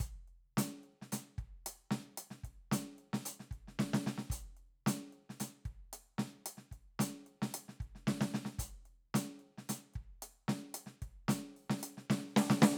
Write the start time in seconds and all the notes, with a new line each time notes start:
0.04 closed hi-hat, kick
0.27 closed hi-hat
0.57 closed hi-hat, snare
0.83 closed hi-hat
1.01 snare
1.12 closed hi-hat, snare
1.38 kick, closed hi-hat
1.66 closed hi-hat
1.91 snare
2.17 closed hi-hat
2.30 snare
2.43 kick, closed hi-hat
2.71 closed hi-hat, snare
2.98 closed hi-hat
3.13 snare
3.25 closed hi-hat
3.39 snare
3.51 kick, closed hi-hat
3.67 snare
3.79 snare
3.93 snare
4.06 snare
4.18 snare
4.30 closed hi-hat, kick
4.56 closed hi-hat
4.86 closed hi-hat, snare
5.12 closed hi-hat
5.29 snare
5.40 closed hi-hat, snare
5.65 kick, closed hi-hat
5.93 closed hi-hat
6.18 snare
6.46 closed hi-hat
6.57 snare
6.71 kick, closed hi-hat
6.99 closed hi-hat, snare
7.26 closed hi-hat
7.42 snare
7.54 closed hi-hat
7.68 snare
7.80 kick, closed hi-hat
7.95 snare
8.07 snare
8.21 snare
8.34 snare
8.45 snare
8.58 closed hi-hat, kick
8.85 closed hi-hat
9.14 closed hi-hat, snare
9.39 closed hi-hat
9.57 snare
9.69 closed hi-hat, snare
9.94 kick, closed hi-hat
10.22 closed hi-hat
10.48 snare
10.74 closed hi-hat
10.86 snare
11.02 kick, closed hi-hat
11.28 closed hi-hat, snare
11.56 open hi-hat
11.69 snare
11.78 hi-hat pedal
11.83 closed hi-hat
11.97 snare
12.10 snare
12.18 snare
12.23 snare
12.27 snare
12.32 snare
12.36 snare
12.50 snare
12.62 snare